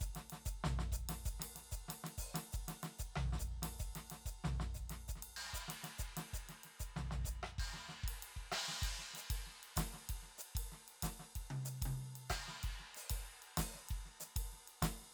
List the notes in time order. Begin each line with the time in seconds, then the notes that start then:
0.01 kick, hi-hat pedal
0.16 snare, ride
0.30 snare, ride
0.46 kick, hi-hat pedal
0.64 snare, floor tom
0.79 snare
0.92 kick, hi-hat pedal
1.09 snare, ride
1.26 kick, hi-hat pedal
1.40 snare, ride
1.56 snare, ride
1.72 kick, hi-hat pedal
1.89 snare, ride
2.04 snare, ride
2.18 kick, hi-hat pedal
2.35 snare, ride
2.53 kick, hi-hat pedal
2.68 snare, ride
2.84 snare, ride
2.99 kick, hi-hat pedal
3.16 cross-stick, floor tom
3.33 snare
3.39 kick, hi-hat pedal
3.63 snare, ride
3.80 kick, hi-hat pedal
3.96 snare, ride
4.11 snare, ride
4.26 kick, hi-hat pedal
4.44 snare, floor tom
4.60 snare
4.75 kick, hi-hat pedal
4.90 snare, ride
5.09 kick, hi-hat pedal
5.16 snare
5.23 ride
5.37 ride
5.54 kick, hi-hat pedal
5.69 snare, ride
5.84 snare, ride
5.99 kick, hi-hat pedal
6.17 snare, ride
6.34 kick, hi-hat pedal
6.49 snare, ride
6.64 snare, ride
6.80 kick, hi-hat pedal
6.97 snare, floor tom
7.11 snare, floor tom
7.25 kick, hi-hat pedal
7.43 cross-stick
7.59 kick, ride
7.74 snare
7.89 snare
8.04 kick
8.08 ride
8.23 ride
8.37 kick
8.52 cross-stick, ride
8.69 snare
8.83 kick, ride
8.99 snare
9.14 snare, hi-hat pedal, ride
9.31 kick, ride
9.47 snare
9.64 ride
9.77 kick, snare, hi-hat pedal, ride
9.94 snare
10.10 kick, ride
10.23 snare
10.39 hi-hat pedal, ride
10.56 kick, ride
10.72 snare
10.88 ride
11.03 kick, snare, hi-hat pedal, ride
11.20 snare
11.36 kick, ride
11.51 high tom
11.66 hi-hat pedal, ride
11.82 kick, high tom, ride
11.87 closed hi-hat
12.16 ride
12.30 kick, cross-stick, hi-hat pedal, ride
12.48 snare
12.64 kick, ride
12.80 snare
12.95 hi-hat pedal, ride
13.10 kick, ride
13.43 ride
13.58 kick, snare, hi-hat pedal, ride
13.75 snare
13.89 kick, ride
14.06 snare
14.21 snare, hi-hat pedal, ride
14.36 kick, ride
14.53 snare
14.68 ride
14.82 kick, snare, hi-hat pedal, ride
15.02 snare